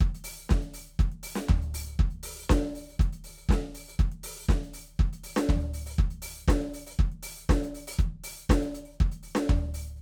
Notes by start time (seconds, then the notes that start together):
0.01 kick, closed hi-hat
0.15 closed hi-hat
0.24 open hi-hat
0.38 open hi-hat
0.47 snare, hi-hat pedal
0.51 kick
0.62 closed hi-hat
0.74 open hi-hat
0.89 open hi-hat
0.94 hi-hat pedal
1.00 kick, closed hi-hat
1.12 closed hi-hat
1.23 open hi-hat
1.36 snare
1.46 kick, floor tom, hi-hat pedal
1.62 closed hi-hat
1.75 open hi-hat
1.87 open hi-hat
1.95 hi-hat pedal
2.00 kick, closed hi-hat
2.11 closed hi-hat
2.23 open hi-hat
2.38 open hi-hat
2.44 hi-hat pedal
2.50 kick, snare
2.75 open hi-hat
2.89 open hi-hat
2.95 hi-hat pedal
3.00 kick, closed hi-hat
3.13 closed hi-hat
3.24 open hi-hat
3.37 open hi-hat
3.49 kick, snare
3.63 closed hi-hat
3.75 open hi-hat
3.88 open hi-hat
3.94 hi-hat pedal
4.00 kick, closed hi-hat
4.12 closed hi-hat
4.24 open hi-hat
4.38 open hi-hat
4.44 hi-hat pedal
4.49 kick, snare
4.64 closed hi-hat
4.74 open hi-hat
4.88 open hi-hat
4.96 kick, hi-hat pedal
5.02 closed hi-hat
5.13 closed hi-hat
5.24 open hi-hat
5.37 snare
5.44 hi-hat pedal
5.49 kick, floor tom
5.61 closed hi-hat
5.74 open hi-hat
5.86 open hi-hat
5.94 hi-hat pedal
5.99 kick, closed hi-hat
6.11 closed hi-hat
6.22 open hi-hat
6.35 open hi-hat
6.44 hi-hat pedal
6.48 kick, snare
6.62 closed hi-hat
6.74 open hi-hat
6.87 open hi-hat
6.93 hi-hat pedal
6.99 kick, closed hi-hat
7.12 closed hi-hat
7.23 open hi-hat
7.38 open hi-hat
7.45 hi-hat pedal
7.50 kick, snare
7.64 closed hi-hat
7.75 open hi-hat
7.88 open hi-hat
7.94 hi-hat pedal
7.99 kick, closed hi-hat
8.24 open hi-hat
8.38 open hi-hat
8.44 hi-hat pedal
8.50 kick, snare
8.62 closed hi-hat
8.75 open hi-hat
8.86 open hi-hat
8.94 hi-hat pedal
9.00 kick, closed hi-hat
9.12 closed hi-hat
9.23 open hi-hat
9.35 snare
9.43 hi-hat pedal
9.50 kick, floor tom
9.74 open hi-hat
9.97 hi-hat pedal